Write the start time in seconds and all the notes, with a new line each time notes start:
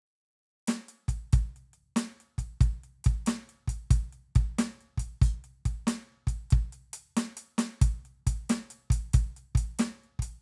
0.68 snare, closed hi-hat
0.88 closed hi-hat
1.08 kick, closed hi-hat
1.33 kick, closed hi-hat
1.56 closed hi-hat
1.73 closed hi-hat
1.96 snare, closed hi-hat
2.20 closed hi-hat
2.38 kick, closed hi-hat
2.61 kick, closed hi-hat
2.84 closed hi-hat
3.04 kick, closed hi-hat
3.26 snare, closed hi-hat
3.49 closed hi-hat
3.68 kick, closed hi-hat
3.90 kick, closed hi-hat
4.13 closed hi-hat
4.35 kick, closed hi-hat
4.58 snare, closed hi-hat
4.81 closed hi-hat
4.98 kick, closed hi-hat
5.21 closed hi-hat, kick
5.44 closed hi-hat
5.65 kick, closed hi-hat
5.87 snare, closed hi-hat
6.27 kick, closed hi-hat
6.50 kick, closed hi-hat
6.72 closed hi-hat
6.93 closed hi-hat
7.17 snare, closed hi-hat
7.37 closed hi-hat
7.58 snare, closed hi-hat
7.81 kick, closed hi-hat
8.05 closed hi-hat
8.27 kick, closed hi-hat
8.49 snare, closed hi-hat
8.70 closed hi-hat
8.90 kick, closed hi-hat
9.13 kick, closed hi-hat
9.36 closed hi-hat
9.55 kick, closed hi-hat
9.79 snare, closed hi-hat
10.04 closed hi-hat
10.19 kick, closed hi-hat